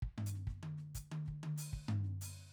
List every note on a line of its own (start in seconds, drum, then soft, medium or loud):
0.02 kick soft
0.18 floor tom medium
0.26 hi-hat pedal medium
0.34 snare soft
0.47 kick soft
0.47 snare soft
0.63 high tom medium
0.77 snare soft
0.94 kick soft
0.94 snare soft
0.94 hi-hat pedal medium
1.12 high tom medium
1.25 kick soft
1.25 snare soft
1.43 high tom medium
1.56 snare soft
1.56 hi-hat pedal medium
1.73 kick soft
1.88 floor tom medium
2.04 snare soft
2.21 hi-hat pedal medium